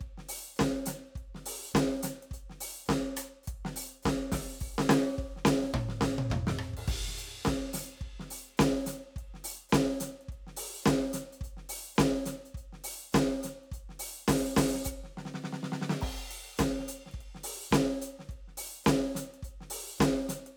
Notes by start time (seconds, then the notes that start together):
0.01 kick, closed hi-hat
0.18 snare
0.29 open hi-hat
0.56 snare, hi-hat pedal
0.61 kick
0.86 closed hi-hat, snare
1.07 closed hi-hat
1.16 kick, closed hi-hat
1.35 snare
1.46 open hi-hat
1.71 kick, hi-hat pedal
1.75 snare
2.03 closed hi-hat, snare
2.23 closed hi-hat
2.31 closed hi-hat, kick
2.50 snare
2.61 open hi-hat
2.86 kick, snare, hi-hat pedal
3.17 closed hi-hat, cross-stick
3.44 hi-hat pedal
3.48 kick, closed hi-hat
3.65 snare
3.76 open hi-hat
4.03 kick, snare, hi-hat pedal
4.32 open hi-hat, kick, snare
4.61 kick, open hi-hat
4.78 snare
4.86 kick, snare
5.18 kick
5.37 snare
5.45 kick, snare
5.63 snare
5.74 kick, hi-hat pedal, high tom
5.89 snare
6.01 kick, snare
6.19 high tom
6.30 kick, mid tom
6.47 snare
6.59 cross-stick
6.74 kick, crash
6.88 kick, ride
7.08 snare
7.18 closed hi-hat
7.45 kick, snare, hi-hat pedal
7.74 open hi-hat, snare
7.97 hi-hat pedal
8.01 kick, closed hi-hat
8.20 snare
8.31 open hi-hat
8.58 kick, snare, hi-hat pedal
8.87 open hi-hat, snare
9.16 kick, closed hi-hat
9.34 snare
9.44 open hi-hat
9.69 kick, snare, hi-hat pedal
10.00 open hi-hat, snare
10.21 closed hi-hat
10.29 kick, closed hi-hat
10.47 snare
10.57 open hi-hat
10.83 snare, hi-hat pedal
10.87 kick
11.13 closed hi-hat, snare
11.33 closed hi-hat
11.41 closed hi-hat, kick
11.57 snare
11.69 open hi-hat
11.96 kick, snare, hi-hat pedal
12.26 closed hi-hat, snare
12.45 closed hi-hat
12.55 closed hi-hat, kick
12.73 snare
12.84 open hi-hat
13.13 kick, snare, hi-hat pedal
13.43 closed hi-hat, snare
13.64 closed hi-hat
13.72 closed hi-hat, kick
13.89 snare
14.00 open hi-hat
14.28 open hi-hat, kick, snare
14.57 open hi-hat, kick, snare
14.74 snare
14.85 open hi-hat, kick, hi-hat pedal
15.04 snare
15.10 kick
15.18 snare
15.26 snare
15.34 snare
15.44 snare
15.53 snare
15.63 snare
15.72 snare
15.82 snare
15.90 snare
16.01 kick, crash
16.31 open hi-hat
16.57 kick, snare, closed hi-hat, hi-hat pedal
16.79 snare
16.88 closed hi-hat
17.06 snare
17.12 kick, closed hi-hat
17.21 closed hi-hat
17.35 snare
17.44 open hi-hat
17.71 kick, snare, hi-hat pedal
18.02 closed hi-hat
18.19 snare
18.29 kick, closed hi-hat
18.48 snare
18.58 open hi-hat
18.84 kick, snare, hi-hat pedal
18.89 closed hi-hat
19.15 closed hi-hat, snare
19.34 closed hi-hat
19.43 closed hi-hat, kick
19.61 snare
19.70 open hi-hat
19.99 kick, snare, closed hi-hat, hi-hat pedal
20.23 kick
20.29 closed hi-hat, snare
20.47 closed hi-hat